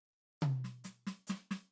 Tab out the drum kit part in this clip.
HH |--p-p-p-|
SD |---ogooo|
T1 |--o-----|